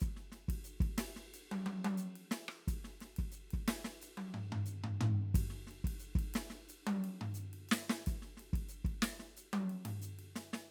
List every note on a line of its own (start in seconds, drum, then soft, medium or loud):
0.01 kick medium
0.01 hi-hat pedal medium
0.01 ride soft
0.17 snare soft
0.33 snare soft
0.33 ride soft
0.49 kick medium
0.49 ride medium
0.65 hi-hat pedal medium
0.81 kick medium
0.81 ride soft
0.98 snare medium
0.98 ride medium
1.17 snare soft
1.34 hi-hat pedal medium
1.34 ride soft
1.52 high tom loud
1.67 high tom medium
1.85 high tom loud
1.98 hi-hat pedal medium
2.16 ride soft
2.32 snare medium
2.32 ride soft
2.49 cross-stick medium
2.68 kick medium
2.68 hi-hat pedal medium
2.68 ride medium
2.85 snare soft
3.01 snare soft
3.01 ride soft
3.17 kick medium
3.17 ride soft
3.32 hi-hat pedal medium
3.51 kick medium
3.51 ride soft
3.68 snare medium
3.68 ride medium
3.85 snare medium
4.02 hi-hat pedal medium
4.02 ride soft
4.18 high tom medium
4.35 floor tom medium
4.53 floor tom loud
4.67 hi-hat pedal medium
4.84 floor tom medium
5.02 floor tom loud
5.35 kick medium
5.35 hi-hat pedal medium
5.35 ride medium
5.51 snare soft
5.68 snare soft
5.72 ride soft
5.85 kick medium
5.85 ride medium
6.00 hi-hat pedal medium
6.16 kick medium
6.16 ride medium
6.35 snare medium
6.35 ride medium
6.51 snare soft
6.69 hi-hat pedal medium
6.69 ride soft
6.88 high tom loud
7.05 ride soft
7.22 floor tom medium
7.35 snare soft
7.35 hi-hat pedal medium
7.54 ride soft
7.70 snare loud
7.70 ride bell soft
7.90 snare medium
8.07 kick medium
8.07 hi-hat pedal medium
8.07 ride medium
8.23 snare soft
8.38 snare soft
8.38 ride soft
8.54 kick medium
8.54 ride soft
8.69 hi-hat pedal medium
8.85 kick medium
8.85 ride soft
9.03 snare loud
9.03 ride medium
9.20 snare soft
9.37 hi-hat pedal medium
9.37 ride soft
9.54 high tom loud
9.70 ride soft
9.86 floor tom medium
9.86 ride medium
10.03 hi-hat pedal medium
10.20 ride soft
10.36 snare medium
10.36 ride soft
10.54 snare medium